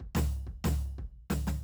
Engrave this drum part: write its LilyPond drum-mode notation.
\new DrumStaff \drummode { \time 4/4 \tempo 4 = 122 \tuplet 3/2 { bd8 <tomfh sn>8 r8 bd8 <tomfh sn>8 r8 bd8 r8 <tomfh sn>8 } <sn tomfh>4 | }